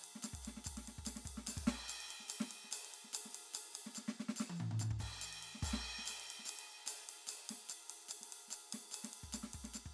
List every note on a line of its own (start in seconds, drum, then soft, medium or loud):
0.01 ride medium
0.01 percussion soft
0.15 snare soft
0.22 snare soft
0.22 ride medium
0.22 percussion medium
0.33 kick soft
0.33 ride medium
0.42 ride medium
0.42 percussion soft
0.47 snare soft
0.56 snare soft
0.64 kick soft
0.64 ride medium
0.64 percussion medium
0.77 snare soft
0.77 ride medium
0.83 percussion soft
0.87 snare soft
0.87 ride medium
0.98 kick soft
1.05 snare soft
1.05 ride loud
1.05 percussion medium
1.16 snare soft
1.16 ride medium
1.25 kick soft
1.25 ride medium
1.25 percussion soft
1.37 snare soft
1.46 snare soft
1.46 ride loud
1.46 percussion loud
1.57 kick soft
1.57 ride medium
1.67 snare medium
1.67 percussion soft
1.67 ride medium
1.88 ride medium
1.88 percussion medium
2.00 ride medium
2.08 ride medium
2.08 percussion soft
2.20 snare soft
2.28 ride loud
2.28 percussion medium
2.40 snare medium
2.40 ride medium
2.48 ride medium
2.48 percussion soft
2.64 snare soft
2.71 ride loud
2.71 percussion loud
2.85 ride medium
2.91 ride medium
2.91 percussion soft
3.04 snare soft
3.13 ride loud
3.13 percussion loud
3.25 snare soft
3.33 ride medium
3.33 percussion soft
3.54 ride loud
3.54 percussion loud
3.73 ride loud
3.73 percussion soft
3.86 snare soft
3.95 snare soft
3.95 percussion loud
4.08 snare medium
4.14 percussion soft
4.19 snare soft
4.28 snare medium
4.36 snare medium
4.36 percussion loud
4.49 high tom medium
4.56 percussion soft
4.60 floor tom medium
4.71 floor tom medium
4.79 floor tom medium
4.79 percussion loud
4.90 kick soft
4.99 kick soft
4.99 percussion soft
4.99 crash soft
4.99 ride medium
5.21 ride medium
5.21 percussion loud
5.33 ride medium
5.42 ride medium
5.42 percussion soft
5.54 snare soft
5.62 kick medium
5.62 percussion loud
5.62 ride medium
5.73 snare medium
5.73 ride soft
5.84 ride soft
5.84 percussion soft
5.98 snare soft
6.06 snare soft
6.06 ride loud
6.06 percussion loud
6.20 ride medium
6.24 percussion soft
6.30 ride medium
6.39 snare soft
6.45 ride loud
6.45 percussion loud
6.59 ride medium
6.64 percussion soft
6.86 ride loud
6.86 percussion loud
7.05 percussion soft
7.09 ride medium
7.27 ride loud
7.27 percussion loud
7.46 ride loud
7.46 percussion soft
7.50 snare soft
7.69 ride medium
7.69 percussion loud
7.87 ride medium
7.87 percussion soft
8.08 ride loud
8.08 percussion medium
8.20 snare soft
8.20 ride medium
8.28 ride medium
8.28 percussion soft
8.48 snare soft
8.48 percussion loud
8.53 ride medium
8.69 ride loud
8.69 percussion soft
8.73 snare soft
8.91 ride loud
8.91 percussion medium
9.04 snare soft
9.04 ride medium
9.09 percussion soft
9.13 ride medium
9.23 kick soft
9.32 snare soft
9.32 ride loud
9.32 percussion loud
9.43 snare soft
9.52 kick soft
9.52 ride medium
9.52 percussion soft
9.64 snare soft
9.64 ride medium
9.74 snare soft
9.74 ride medium
9.74 percussion loud
9.85 kick soft